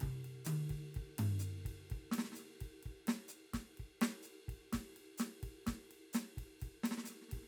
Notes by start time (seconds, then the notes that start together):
0.01 kick, mid tom, ride
0.09 kick
0.25 ride
0.45 hi-hat pedal, high tom, ride
0.70 kick, ride
0.76 kick
0.95 kick, ride
1.02 kick
1.19 floor tom, ride
1.40 hi-hat pedal, ride
1.66 kick, ride
1.71 kick
1.91 kick, ride
1.98 kick
2.12 snare, ride
2.19 snare
2.25 snare
2.33 snare, hi-hat pedal
2.37 snare, ride
2.45 snare
2.50 snare
2.55 snare
2.60 kick, snare, ride
2.63 snare
2.68 snare
2.83 kick, ride
2.92 kick
3.08 snare, ride
3.29 hi-hat pedal, ride
3.54 kick, snare, ride
3.78 kick, ride
4.02 snare, ride
4.23 hi-hat pedal, ride
4.49 kick, ride
4.54 kick
4.73 kick, snare, ride
4.80 kick
4.91 snare
4.97 ride
5.18 snare, hi-hat pedal, ride
5.44 kick, ride
5.49 kick
5.67 kick, snare, hi-hat pedal, ride
5.73 kick
5.92 ride
6.14 snare, hi-hat pedal, ride
6.38 kick, ride
6.43 kick
6.60 kick, hi-hat pedal, ride
6.68 kick
6.84 snare, ride
6.92 snare
6.98 snare
7.04 snare, hi-hat pedal
7.08 snare, ride
7.16 snare
7.22 snare
7.29 snare, ride
7.33 kick, snare
7.38 kick
7.43 snare